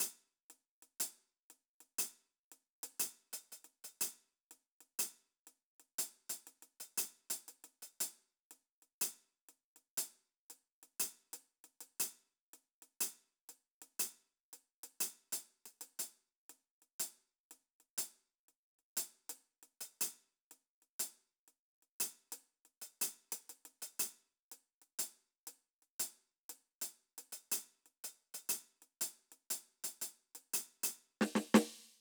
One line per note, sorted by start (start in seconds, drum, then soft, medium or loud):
0.01 closed hi-hat loud
0.51 closed hi-hat soft
0.83 closed hi-hat soft
1.01 closed hi-hat loud
1.51 closed hi-hat soft
1.81 closed hi-hat soft
1.99 closed hi-hat loud
2.52 closed hi-hat soft
2.84 closed hi-hat medium
3.00 closed hi-hat loud
3.34 closed hi-hat medium
3.53 closed hi-hat medium
3.65 closed hi-hat soft
3.85 closed hi-hat medium
4.02 closed hi-hat loud
4.52 closed hi-hat soft
4.81 closed hi-hat soft
5.00 closed hi-hat loud
5.48 closed hi-hat soft
5.81 closed hi-hat soft
5.99 closed hi-hat loud
6.30 closed hi-hat medium
6.48 closed hi-hat soft
6.63 closed hi-hat soft
6.81 closed hi-hat medium
6.98 closed hi-hat loud
7.31 closed hi-hat loud
7.49 closed hi-hat medium
7.65 closed hi-hat soft
7.83 closed hi-hat medium
8.01 closed hi-hat loud
8.52 closed hi-hat soft
8.83 closed hi-hat soft
9.02 closed hi-hat loud
9.49 closed hi-hat soft
9.77 closed hi-hat soft
9.98 closed hi-hat loud
10.51 closed hi-hat medium
10.84 closed hi-hat soft
11.01 closed hi-hat loud
11.34 closed hi-hat medium
11.65 closed hi-hat soft
11.81 closed hi-hat medium
12.01 closed hi-hat loud
12.54 closed hi-hat soft
12.83 open hi-hat soft
13.01 closed hi-hat loud
13.50 closed hi-hat medium
13.83 closed hi-hat soft
14.00 closed hi-hat loud
14.54 closed hi-hat medium
14.84 closed hi-hat medium
15.01 closed hi-hat loud
15.33 closed hi-hat loud
15.66 open hi-hat medium
15.82 closed hi-hat medium
16.00 closed hi-hat loud
16.50 open hi-hat soft
16.83 closed hi-hat soft
17.01 closed hi-hat loud
17.52 closed hi-hat soft
17.81 closed hi-hat soft
17.99 closed hi-hat loud
18.49 closed hi-hat soft
18.80 closed hi-hat soft
18.98 closed hi-hat loud
19.30 closed hi-hat medium
19.64 closed hi-hat soft
19.82 closed hi-hat medium
20.02 closed hi-hat loud
20.52 closed hi-hat soft
20.83 closed hi-hat soft
21.00 closed hi-hat loud
21.49 closed hi-hat soft
21.83 closed hi-hat soft
22.01 closed hi-hat loud
22.33 closed hi-hat medium
22.66 closed hi-hat soft
22.82 closed hi-hat medium
23.02 closed hi-hat loud
23.33 closed hi-hat loud
23.50 closed hi-hat medium
23.66 closed hi-hat soft
23.83 closed hi-hat medium
24.00 closed hi-hat loud
24.52 closed hi-hat medium
24.82 open hi-hat soft
25.00 closed hi-hat loud
25.48 closed hi-hat medium
25.83 open hi-hat soft
26.00 closed hi-hat loud
26.50 closed hi-hat medium
26.82 closed hi-hat medium
27.19 closed hi-hat medium
27.33 closed hi-hat medium
27.52 closed hi-hat loud
27.87 closed hi-hat soft
28.05 closed hi-hat medium
28.35 closed hi-hat medium
28.50 closed hi-hat loud
28.83 closed hi-hat soft
29.02 closed hi-hat loud
29.33 closed hi-hat soft
29.51 closed hi-hat loud
29.85 closed hi-hat medium
30.02 closed hi-hat medium
30.36 closed hi-hat medium
30.54 closed hi-hat loud
30.84 closed hi-hat loud
31.22 snare medium
31.36 snare medium
31.55 snare loud